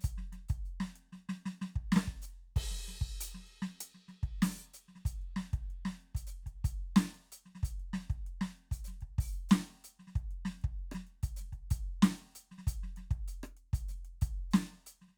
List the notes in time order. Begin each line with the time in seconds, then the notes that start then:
0.01 closed hi-hat, kick, hi-hat pedal
0.18 snare
0.33 snare, closed hi-hat
0.49 closed hi-hat, kick
0.66 closed hi-hat
0.80 snare
0.96 closed hi-hat
1.13 snare
1.29 snare
1.46 snare
1.62 snare
1.76 kick
1.92 snare
1.96 snare
2.08 kick
2.22 hi-hat pedal
2.56 kick, crash
2.71 snare
2.88 snare
3.01 kick
3.21 closed hi-hat
3.35 snare
3.47 closed hi-hat
3.62 snare
3.81 closed hi-hat
3.95 snare
4.09 snare, closed hi-hat
4.23 kick, closed hi-hat
4.42 open hi-hat, snare
4.74 open hi-hat, hi-hat pedal
4.88 snare
4.96 snare
5.06 closed hi-hat, kick
5.22 closed hi-hat
5.36 snare
5.53 kick, closed hi-hat
5.71 closed hi-hat
5.85 snare
6.01 closed hi-hat
6.15 open hi-hat, kick
6.27 hi-hat pedal
6.43 kick, snare
6.47 closed hi-hat
6.65 open hi-hat, kick
6.96 snare, hi-hat pedal
7.15 closed hi-hat
7.32 closed hi-hat
7.46 snare
7.55 snare
7.63 closed hi-hat, kick
7.80 closed hi-hat
7.94 snare
8.10 kick, closed hi-hat
8.27 closed hi-hat
8.41 snare
8.57 closed hi-hat
8.72 open hi-hat, kick
8.85 snare, hi-hat pedal
9.01 kick, closed hi-hat
9.19 open hi-hat, kick
9.49 snare, hi-hat pedal
9.67 closed hi-hat
9.84 closed hi-hat
9.99 snare
10.07 snare
10.16 kick, closed hi-hat
10.31 closed hi-hat
10.45 snare
10.50 snare
10.62 kick, closed hi-hat
10.79 closed hi-hat
10.92 cross-stick, snare
11.07 closed hi-hat
11.23 open hi-hat, kick
11.37 snare, hi-hat pedal
11.53 kick, closed hi-hat
11.71 open hi-hat, kick
12.03 snare, hi-hat pedal
12.19 closed hi-hat
12.36 closed hi-hat
12.52 snare
12.58 snare
12.67 closed hi-hat, kick
12.83 snare
12.97 snare, closed hi-hat
13.11 kick, closed hi-hat
13.28 closed hi-hat
13.44 cross-stick
13.57 closed hi-hat
13.73 open hi-hat, kick
13.89 snare, hi-hat pedal
14.05 closed hi-hat
14.22 closed hi-hat, kick
14.51 snare, hi-hat pedal
14.57 closed hi-hat
14.73 snare
14.87 closed hi-hat
15.02 snare
15.08 snare
15.12 snare